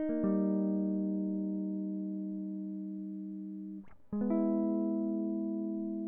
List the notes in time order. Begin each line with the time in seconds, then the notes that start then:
0.00 D#4
0.10 A#3
0.25 G3
4.14 G#3
4.22 B3
4.31 E4